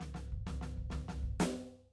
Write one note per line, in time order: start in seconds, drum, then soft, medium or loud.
0.00 snare soft
0.00 floor tom medium
0.14 snare soft
0.14 floor tom soft
0.32 kick soft
0.47 snare soft
0.47 floor tom medium
0.61 snare soft
0.61 floor tom soft
0.77 kick soft
0.90 snare soft
0.90 floor tom medium
1.08 snare soft
1.08 floor tom medium
1.23 kick soft
1.40 open hi-hat loud
1.40 snare loud